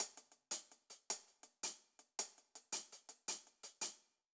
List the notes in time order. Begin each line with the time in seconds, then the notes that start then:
0.00 closed hi-hat
0.17 closed hi-hat
0.32 closed hi-hat
0.51 closed hi-hat
0.72 closed hi-hat
0.90 closed hi-hat
1.10 closed hi-hat
1.27 closed hi-hat
1.43 closed hi-hat
1.63 closed hi-hat
1.84 closed hi-hat
1.99 closed hi-hat
2.19 closed hi-hat
2.38 closed hi-hat
2.55 closed hi-hat
2.72 closed hi-hat
2.92 closed hi-hat
3.09 closed hi-hat
3.28 closed hi-hat
3.47 closed hi-hat
3.63 closed hi-hat
3.81 closed hi-hat